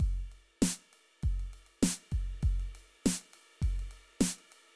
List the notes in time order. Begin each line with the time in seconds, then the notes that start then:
0.02 kick, ride
0.32 ride
0.62 snare, ride
0.93 ride
1.23 kick, ride
1.39 ride
1.53 hi-hat pedal, ride
1.66 ride
1.82 snare, ride
2.12 kick, ride
2.43 kick, ride
2.60 ride
2.75 hi-hat pedal, ride
3.03 snare, hi-hat pedal, ride
3.21 ride
3.31 hi-hat pedal, ride
3.62 kick, ride
3.79 ride
3.90 hi-hat pedal, ride
4.20 snare, hi-hat pedal, ride
4.38 ride
4.48 hi-hat pedal, ride